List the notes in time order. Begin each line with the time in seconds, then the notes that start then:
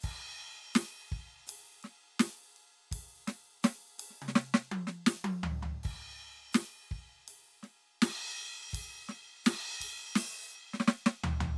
0.01 kick, hi-hat pedal, ride
0.74 snare, hi-hat pedal, ride
1.11 kick, ride
1.47 hi-hat pedal, ride
1.83 snare, ride
2.20 snare, hi-hat pedal, ride
2.57 ride
2.92 kick, hi-hat pedal, ride
3.28 snare, ride
3.64 snare, hi-hat pedal, ride
3.99 hi-hat pedal, ride
4.11 snare
4.22 mid tom
4.29 snare
4.36 snare
4.55 snare
4.72 high tom
4.88 snare
5.07 snare, hi-hat pedal
5.25 open hi-hat, high tom
5.44 floor tom
5.63 floor tom
5.84 kick, ride
6.53 snare, hi-hat pedal, ride
6.92 kick
7.28 hi-hat pedal, ride
7.63 snare, ride
8.02 snare, hi-hat pedal, ride
8.37 ride
8.70 kick, hi-hat pedal
8.75 ride
9.09 snare, ride
9.45 snare, hi-hat pedal, ride
9.81 kick, ride
10.16 open hi-hat, snare
10.52 hi-hat pedal
10.74 snare
10.80 snare
10.88 snare
11.07 snare
11.24 floor tom
11.41 floor tom